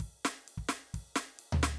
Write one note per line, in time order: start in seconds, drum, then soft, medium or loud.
0.03 kick soft
0.03 ride medium
0.25 snare loud
0.25 ride medium
0.48 ride medium
0.57 kick soft
0.69 snare loud
0.69 ride medium
0.94 kick soft
0.94 ride medium
1.16 snare loud
1.16 ride medium
1.39 ride medium
1.52 floor tom loud
1.63 snare loud